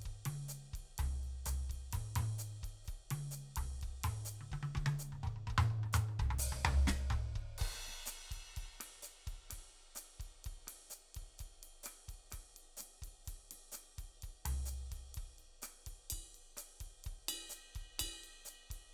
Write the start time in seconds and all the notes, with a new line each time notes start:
0.01 hi-hat pedal, ride
0.05 kick
0.11 kick
0.25 high tom, ride
0.48 hi-hat pedal, ride
0.73 kick, ride
0.78 kick
0.98 kick, floor tom, hi-hat pedal, ride
1.05 kick
1.23 ride
1.45 floor tom, hi-hat pedal, ride
1.69 kick, ride
1.75 kick
1.91 kick, hi-hat pedal, mid tom, ride
2.00 kick
2.15 mid tom, ride
2.38 hi-hat pedal, ride
2.63 kick, ride
2.68 kick
2.84 kick, hi-hat pedal, ride
2.94 kick
3.10 high tom, ride
3.31 hi-hat pedal, ride
3.56 kick, floor tom, ride
3.63 kick
3.81 kick, ride
3.88 kick
4.03 mid tom, ride
4.25 hi-hat pedal
4.29 ride
4.41 high tom
4.51 kick, high tom
4.57 kick
4.63 high tom
4.75 kick, high tom
4.86 high tom
4.99 hi-hat pedal
5.12 mid tom
5.23 kick, mid tom
5.32 kick, mid tom
5.47 kick, mid tom
5.58 mid tom
5.70 mid tom
5.83 mid tom
5.93 hi-hat pedal, mid tom
6.08 mid tom
6.19 kick, floor tom
6.30 floor tom
6.38 kick, hi-hat pedal
6.52 floor tom
6.63 kick, floor tom
6.87 kick, snare
6.94 kick
7.10 kick, mid tom
7.18 kick
7.35 kick
7.41 kick
7.58 kick, crash
7.67 kick
7.73 cross-stick
7.75 cross-stick
7.88 snare
8.06 cross-stick, snare, hi-hat pedal, ride
8.31 kick, ride
8.36 kick
8.56 kick, ride
8.63 kick
8.80 cross-stick, snare, ride
9.02 hi-hat pedal, ride
9.27 kick, ride
9.32 kick
9.50 kick, cross-stick, hi-hat pedal, ride
9.57 kick
9.95 cross-stick, hi-hat pedal, ride
10.19 kick, ride
10.25 kick
10.43 kick, hi-hat pedal, ride
10.51 kick
10.67 cross-stick, ride
10.90 hi-hat pedal, ride
11.14 kick, ride
11.22 kick
11.38 kick, hi-hat pedal, ride
11.45 kick
11.63 ride
11.83 cross-stick, hi-hat pedal, ride
12.08 kick, ride
12.13 kick
12.30 kick, cross-stick, snare, hi-hat pedal, ride
12.38 kick
12.56 ride
12.77 snare, hi-hat pedal, ride
13.02 kick, ride
13.07 kick
13.24 kick, hi-hat pedal, ride
13.32 kick
13.51 snare, ride
13.72 cross-stick, hi-hat pedal, ride
13.98 kick, ride
14.03 kick
14.22 kick, ride
14.28 kick
14.45 floor tom, ride
14.65 hi-hat pedal, ride
14.91 kick, ride
14.97 kick
15.14 kick, ride
15.22 kick
15.38 ride
15.62 cross-stick, snare, hi-hat pedal, ride
15.86 kick, ride
15.92 kick
16.10 kick, ride bell
16.17 kick
16.34 ride
16.57 cross-stick, hi-hat pedal, ride
16.80 kick, ride
16.86 kick
17.03 kick, hi-hat pedal, ride
17.11 kick
17.28 snare, ride bell
17.49 hi-hat pedal, ride
17.75 kick, ride
17.81 kick
17.98 kick, cross-stick, snare, ride bell
18.06 kick
18.23 ride
18.45 hi-hat pedal, ride
18.70 kick, ride
18.75 kick